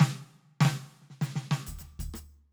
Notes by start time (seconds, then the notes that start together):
0.00 snare
0.61 snare
0.65 snare
1.02 snare
1.10 snare
1.21 snare, percussion
1.36 snare
1.51 snare
1.56 cross-stick
1.67 kick, percussion
1.79 snare, percussion
1.99 kick, percussion
2.14 cross-stick, percussion